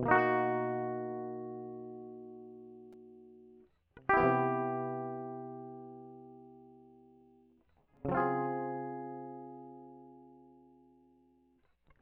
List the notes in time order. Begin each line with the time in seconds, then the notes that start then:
0.00 B2
0.06 A#3 D#4
0.12 F#4
4.00 C3
4.10 G4
4.14 B3 E4
4.25 C3
8.06 C#3
8.12 C4 F4
8.17 G#4
11.90 D#3